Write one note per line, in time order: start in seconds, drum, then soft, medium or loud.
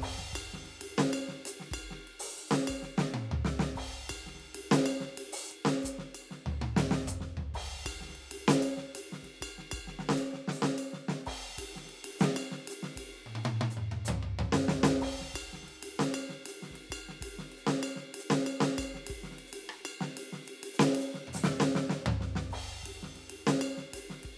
0.01 kick soft
0.01 hi-hat pedal soft
0.01 crash loud
0.11 kick soft
0.18 snare soft
0.33 kick soft
0.33 ride bell loud
0.54 snare soft
0.64 snare soft
0.64 ride soft
0.81 ride loud
0.98 snare loud
1.13 ride bell loud
1.29 snare soft
1.46 hi-hat pedal loud
1.46 ride loud
1.60 snare soft
1.71 kick soft
1.71 ride bell loud
1.78 kick soft
1.91 snare soft
2.07 ride medium
2.20 open hi-hat loud
2.38 ride medium
2.51 snare loud
2.67 kick soft
2.67 ride bell loud
2.83 snare soft
2.98 snare loud
3.14 high tom loud
3.31 floor tom loud
3.45 snare medium
3.59 snare loud
3.76 kick soft
3.76 crash medium
3.82 kick soft
3.92 cross-stick soft
4.09 kick soft
4.09 ride bell loud
4.26 snare soft
4.34 snare soft
4.40 snare soft
4.40 ride soft
4.45 snare soft
4.55 ride loud
4.71 snare loud
4.86 ride bell loud
5.00 snare soft
5.18 ride loud
5.33 open hi-hat loud
5.51 ride medium
5.65 snare loud
5.83 kick soft
5.83 hi-hat pedal loud
5.83 ride medium
5.99 snare soft
6.15 ride bell loud
6.31 snare soft
6.46 floor tom loud
6.62 high tom loud
6.77 snare loud
6.91 snare loud
7.06 kick soft
7.06 hi-hat pedal loud
7.06 mid tom medium
7.11 kick soft
7.21 snare soft
7.37 floor tom medium
7.54 kick soft
7.54 crash loud
7.86 kick soft
7.86 ride bell loud
8.01 snare soft
8.09 snare soft
8.15 ride medium
8.31 ride loud
8.48 snare loud
8.48 hi-hat pedal loud
8.62 ride bell loud
8.77 snare soft
8.95 hi-hat pedal medium
8.95 ride loud
9.12 snare soft
9.23 kick soft
9.23 snare soft
9.23 ride medium
9.41 kick soft
9.41 ride bell loud
9.58 snare soft
9.72 kick soft
9.72 ride bell loud
9.79 kick soft
9.87 snare soft
9.99 snare medium
10.09 snare loud
10.14 hi-hat pedal soft
10.14 ride bell medium
10.33 snare soft
10.48 snare medium
10.48 hi-hat pedal medium
10.62 snare medium
10.78 hi-hat pedal soft
10.78 ride bell loud
10.93 snare soft
11.08 snare medium
11.26 kick soft
11.26 crash loud
11.49 snare soft
11.58 kick soft
11.58 ride loud
11.76 snare soft
11.85 snare soft
11.89 ride medium
12.04 ride loud
12.19 snare loud
12.19 hi-hat pedal medium
12.36 ride bell loud
12.51 snare medium
12.68 hi-hat pedal medium
12.68 ride loud
12.83 snare medium
12.96 kick soft
12.96 ride loud
13.10 hi-hat pedal soft
13.15 cross-stick soft
13.26 high tom medium
13.35 high tom medium
13.44 hi-hat pedal soft
13.44 high tom loud
13.61 high tom loud
13.70 hi-hat pedal medium
13.77 mid tom medium
13.92 mid tom medium
14.05 hi-hat pedal loud
14.05 floor tom loud
14.23 floor tom medium
14.39 floor tom loud
14.53 snare loud
14.68 snare loud
14.83 snare loud
15.01 kick soft
15.01 crash loud
15.21 snare soft
15.34 kick soft
15.34 ride bell loud
15.53 snare soft
15.63 snare soft
15.68 ride medium
15.83 ride loud
15.99 snare medium
15.99 hi-hat pedal medium
16.14 ride bell loud
16.29 snare soft
16.46 hi-hat pedal medium
16.46 ride loud
16.62 snare soft
16.71 kick soft
16.71 snare soft
16.76 ride medium
16.90 kick soft
16.90 hi-hat pedal soft
16.90 ride bell loud
17.09 snare soft
17.21 kick soft
17.21 ride loud
17.39 snare soft
17.52 ride medium
17.57 hi-hat pedal soft
17.67 snare loud
17.83 ride bell loud
17.96 snare soft
18.14 ride loud
18.19 hi-hat pedal medium
18.30 snare loud
18.46 ride bell loud
18.61 snare loud
18.78 kick soft
18.78 hi-hat pedal medium
18.78 ride bell loud
18.84 kick soft
18.95 snare soft
19.07 kick soft
19.07 ride loud
19.23 snare soft
19.31 snare soft
19.36 snare soft
19.36 ride medium
19.47 hi-hat pedal soft
19.53 ride loud
19.69 cross-stick medium
19.85 ride bell loud
20.01 snare medium
20.17 hi-hat pedal medium
20.17 ride loud
20.33 snare soft
20.45 hi-hat pedal soft
20.45 ride medium
20.63 ride loud
20.74 hi-hat pedal medium
20.79 snare loud
20.95 ride loud
21.00 hi-hat pedal medium
21.14 snare soft
21.27 kick soft
21.27 mid tom medium
21.33 snare medium
21.33 hi-hat pedal loud
21.44 snare loud
21.60 snare loud
21.75 snare medium
21.90 snare medium
22.06 floor tom loud
22.21 snare medium
22.35 snare medium
22.48 kick soft
22.48 hi-hat pedal soft
22.48 crash loud
22.72 cross-stick soft
22.83 kick soft
22.83 ride loud
23.03 snare soft
23.15 snare soft
23.15 ride medium
23.30 ride loud
23.47 snare loud
23.47 hi-hat pedal medium
23.61 ride bell loud
23.77 snare soft
23.93 kick soft
23.93 hi-hat pedal medium
23.93 ride loud
24.10 snare soft
24.23 kick soft
24.23 ride medium